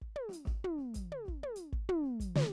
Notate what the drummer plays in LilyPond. \new DrumStaff \drummode { \time 4/4 \tempo 4 = 95 bd16 tommh16 <sn hhp>16 <sn bd>16 tomfh16 sn16 <sn hhp bd>16 tommh16 <sn bd>16 tommh16 <hhp sn>16 <sn bd>16 tomfh16 sn16 <sn bd hhp>16 <sn tommh>16 | }